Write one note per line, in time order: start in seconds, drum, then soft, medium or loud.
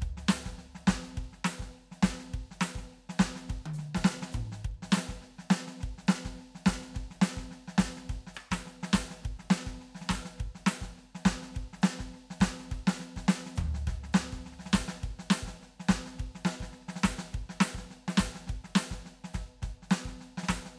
0.01 kick medium
0.01 snare soft
0.09 kick soft
0.17 snare soft
0.28 snare loud
0.28 hi-hat pedal medium
0.46 kick soft
0.46 snare soft
0.58 snare soft
0.75 snare soft
0.87 kick soft
0.87 snare loud
0.87 hi-hat pedal medium
1.03 snare soft
1.17 kick soft
1.17 snare soft
1.24 kick soft
1.33 snare soft
1.45 snare loud
1.45 hi-hat pedal medium
1.59 kick soft
1.59 snare soft
1.92 snare soft
2.03 kick soft
2.03 snare loud
2.03 hi-hat pedal medium
2.09 kick soft
2.19 snare soft
2.31 kick soft
2.31 snare soft
2.41 kick soft
2.51 snare soft
2.60 snare loud
2.60 hi-hat pedal medium
2.75 kick soft
2.75 snare soft
2.92 snare soft
3.09 snare medium
3.19 kick soft
3.19 snare loud
3.19 hi-hat pedal medium
3.36 snare soft
3.49 kick soft
3.49 snare soft
3.56 kick soft
3.66 high tom loud
3.74 hi-hat pedal medium
3.78 snare soft
3.95 kick soft
3.95 snare medium
4.02 kick soft
4.02 snare loud
4.22 snare medium
4.32 kick soft
4.32 hi-hat pedal medium
4.32 mid tom loud
4.41 kick soft
4.44 kick soft
4.52 snare soft
4.65 kick soft
4.71 kick soft
4.74 kick soft
4.82 snare soft
4.91 snare loud
4.91 hi-hat pedal medium
4.97 snare medium
5.09 kick soft
5.09 snare soft
5.22 snare soft
5.39 snare soft
5.50 snare loud
5.50 hi-hat pedal medium
5.67 snare soft
5.80 kick soft
5.80 snare soft
5.89 kick soft
5.98 snare soft
6.07 snare loud
6.07 hi-hat pedal medium
6.25 kick soft
6.25 snare soft
6.38 snare soft
6.55 snare soft
6.65 kick soft
6.65 snare loud
6.65 hi-hat pedal medium
6.73 kick soft
6.82 snare soft
6.94 kick soft
6.94 snare soft
7.02 kick soft
7.04 kick soft
7.11 snare soft
7.22 snare loud
7.22 hi-hat pedal medium
7.37 kick soft
7.37 snare soft
7.51 snare soft
7.68 snare soft
7.78 kick soft
7.78 snare loud
7.78 hi-hat pedal medium
7.85 kick soft
7.97 snare soft
8.09 kick soft
8.09 snare soft
8.16 kick soft
8.27 snare soft
8.34 cross-stick medium
8.34 hi-hat pedal medium
8.51 kick soft
8.51 snare loud
8.67 snare soft
8.83 snare medium
8.93 kick soft
8.93 snare loud
8.93 hi-hat pedal medium
9.00 kick soft
9.11 snare soft
9.23 kick soft
9.23 snare soft
9.39 snare soft
9.50 snare loud
9.50 hi-hat pedal medium
9.66 kick soft
9.66 snare soft
9.81 snare soft
9.89 snare soft
9.93 snare soft
9.95 snare soft
10.01 snare soft
10.06 snare soft
10.06 hi-hat pedal medium
10.09 kick soft
10.09 snare loud
10.14 snare medium
10.18 kick soft
10.25 snare soft
10.38 kick soft
10.38 snare soft
10.46 kick soft
10.55 snare soft
10.66 snare loud
10.66 hi-hat pedal medium
10.81 kick soft
10.81 snare soft
10.98 snare soft
11.15 snare soft
11.25 kick soft
11.25 snare loud
11.25 hi-hat pedal medium
11.34 kick soft
11.42 snare soft
11.54 kick soft
11.54 snare soft
11.63 kick soft
11.73 snare soft
11.82 snare loud
11.82 hi-hat pedal medium
11.99 kick soft
11.99 snare soft
12.14 snare soft
12.30 snare soft
12.40 kick soft
12.40 snare loud
12.40 hi-hat pedal medium
12.47 kick soft
12.59 snare soft
12.71 kick soft
12.71 snare soft
12.78 kick soft
12.87 snare loud
12.97 snare soft
12.97 hi-hat pedal medium
13.16 kick soft
13.16 snare soft
13.28 snare loud
13.46 snare soft
13.56 kick soft
13.56 floor tom loud
13.56 hi-hat pedal medium
13.74 snare soft
13.87 kick medium
13.87 snare soft
13.94 kick soft
13.97 kick soft
14.03 snare soft
14.13 snare loud
14.13 hi-hat pedal medium
14.32 kick soft
14.32 snare soft
14.38 kick soft
14.46 snare soft
14.52 snare soft
14.57 snare soft
14.59 snare soft
14.66 snare soft
14.72 kick soft
14.72 snare loud
14.72 hi-hat pedal medium
14.80 kick soft
14.84 kick soft
14.88 snare medium
15.02 kick soft
15.02 snare soft
15.09 kick soft
15.19 snare soft
15.30 snare loud
15.30 hi-hat pedal medium
15.43 kick soft
15.47 snare soft
15.62 snare soft
15.80 snare soft
15.88 kick soft
15.88 snare loud
15.88 hi-hat pedal medium
16.06 snare soft
16.18 kick soft
16.18 snare soft
16.26 kick soft
16.35 snare soft
16.45 snare loud
16.45 hi-hat pedal medium
16.60 kick soft
16.60 snare soft
16.73 snare soft
16.81 snare soft
16.88 snare medium
16.96 snare medium
17.03 kick soft
17.03 snare loud
17.03 hi-hat pedal medium
17.11 kick soft
17.19 snare medium
17.33 kick soft
17.33 snare soft
17.41 kick soft
17.49 snare soft
17.60 snare loud
17.60 hi-hat pedal medium
17.74 kick soft
17.74 snare soft
17.91 snare soft
18.08 snare medium
18.17 kick soft
18.17 snare loud
18.17 hi-hat pedal medium
18.26 kick soft
18.29 kick soft
18.35 snare soft
18.47 kick soft
18.47 snare soft
18.56 kick soft
18.64 snare soft
18.75 snare loud
18.75 hi-hat pedal medium
18.91 kick soft
18.91 snare soft
19.06 snare soft
19.24 snare soft
19.34 kick soft
19.34 snare medium
19.34 hi-hat pedal medium
19.41 kick soft
19.62 kick soft
19.62 snare soft
19.70 kick soft
19.82 snare soft
19.90 snare loud
19.90 hi-hat pedal medium
20.05 kick soft
20.05 snare soft
20.21 snare soft
20.38 snare medium
20.43 snare medium
20.48 kick soft
20.48 snare loud
20.48 hi-hat pedal medium
20.66 snare soft